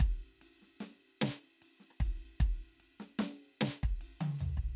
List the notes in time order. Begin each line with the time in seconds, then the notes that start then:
0.01 kick, ride
0.42 ride
0.63 snare
0.81 snare, ride
1.22 snare, ride
1.36 snare
1.63 ride
1.81 snare
1.91 cross-stick
2.01 kick, ride
2.41 kick, ride
2.61 snare
2.81 ride
3.01 snare
3.20 snare, ride
3.62 snare, ride
3.84 kick
4.02 ride
4.21 high tom
4.40 hi-hat pedal, floor tom
4.58 kick